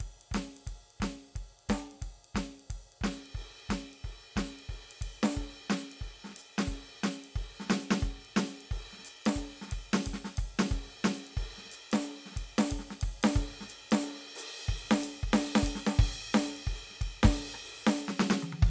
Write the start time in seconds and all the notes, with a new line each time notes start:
0.01 kick, ride
0.22 ride
0.32 kick, snare, ride
0.58 ride
0.68 kick, ride
0.91 ride
1.01 kick, snare, ride
1.36 kick, ride
1.60 ride
1.70 kick, snare, ride
1.92 ride
2.03 kick, ride
2.25 ride
2.35 kick, snare, ride
2.60 ride
2.71 kick, ride
2.93 ride
3.02 kick, snare, ride
3.27 ride
3.35 kick, ride
3.61 ride
3.70 kick, snare, ride
3.94 ride
4.05 kick, ride
4.28 ride
4.37 kick, snare, ride
4.60 ride
4.70 kick, ride
4.92 ride
5.02 kick, ride
5.24 snare
5.37 kick, ride
5.71 snare, ride
5.93 ride
6.02 kick, ride
6.25 snare
6.30 snare
6.37 hi-hat pedal, ride
6.59 snare, ride
6.68 kick, ride
7.04 snare, hi-hat pedal, ride
7.25 ride
7.36 kick, ride
7.61 snare
7.67 snare
7.71 snare, hi-hat pedal
7.91 snare
8.03 kick, ride
8.26 ride
8.37 snare, hi-hat pedal, ride
8.62 ride
8.72 kick, ride
8.93 snare
8.99 snare
9.06 hi-hat pedal, ride
9.27 snare, ride
9.37 kick, ride
9.62 snare
9.68 snare, ride
9.73 kick, hi-hat pedal
9.94 snare, ride
10.07 kick, ride
10.14 snare
10.25 snare
10.30 snare
10.38 kick, hi-hat pedal, ride
10.60 snare, ride
10.72 kick, ride
11.05 snare, hi-hat pedal, ride
11.28 ride
11.38 kick, ride
11.58 snare
11.66 snare
11.72 hi-hat pedal, ride
11.93 snare, ride
12.05 ride
12.27 snare
12.32 snare
12.37 kick, hi-hat pedal, ride
12.59 snare, ride
12.72 kick, ride
12.80 snare
12.91 snare
13.02 kick, ride
13.24 snare, ride
13.36 kick, ride
13.62 snare
13.65 snare
13.69 hi-hat pedal, ride
13.92 snare, ride
14.04 ride
14.36 open hi-hat, hi-hat pedal, ride
14.68 kick, ride
14.92 snare
14.98 hi-hat pedal
15.04 ride bell
15.24 kick
15.34 snare, ride
15.56 snare
15.63 kick, ride
15.76 snare
15.87 snare
15.99 kick, crash
16.33 snare, hi-hat pedal, ride
16.57 ride
16.68 kick, ride
16.91 snare
16.96 cross-stick
17.02 kick, hi-hat pedal, ride
17.24 kick, snare, ride
17.55 cross-stick
17.66 hi-hat pedal, ride
17.88 snare
18.09 snare
18.20 snare
18.26 hi-hat pedal
18.31 snare
18.43 high tom
18.53 high tom
18.63 kick, crash